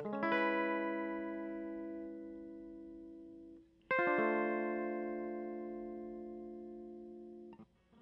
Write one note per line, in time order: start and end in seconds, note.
0.00 0.35 D3
0.05 3.60 G#3
0.13 3.62 C#4
0.23 3.63 E4
3.99 7.57 F4
4.07 7.58 D4
4.18 7.57 A3